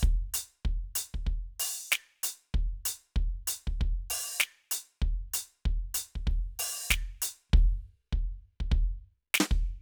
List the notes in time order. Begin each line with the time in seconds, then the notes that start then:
0.01 kick, hi-hat pedal
0.34 closed hi-hat
0.65 kick
0.96 closed hi-hat
1.14 kick
1.27 kick
1.60 open hi-hat
1.91 snare, hi-hat pedal
2.23 closed hi-hat
2.54 kick
2.86 closed hi-hat
3.16 kick
3.48 closed hi-hat
3.67 kick
3.81 kick
4.10 open hi-hat
4.40 snare, hi-hat pedal
4.71 closed hi-hat
5.02 kick
5.34 closed hi-hat
5.66 kick
5.95 closed hi-hat
6.16 kick
6.27 kick
6.31 crash
6.59 open hi-hat
6.90 kick, snare, hi-hat pedal
7.22 closed hi-hat
7.50 kick
7.54 kick
7.58 crash
8.13 kick
8.60 kick
8.72 kick
9.35 snare
9.40 snare
9.51 kick